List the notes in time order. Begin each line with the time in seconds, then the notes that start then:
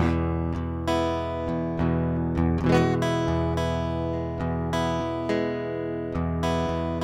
0.00 E2 B2 E3
0.54 E2 B2
0.86 B3 E4
1.48 E2
1.80 E2 B2 E3
2.36 E2 B2
2.59 F2
2.65 B2 E3
2.70 G#3 B3
2.75 F#4
3.03 B3 E4
3.27 E2 B2
3.58 B3 E4
4.15 G#3
4.39 E2 B2
4.74 B3 E4
5.00 E2
5.30 E3 G#3
6.14 E2 B2
6.44 B3 E4
6.67 E2 B2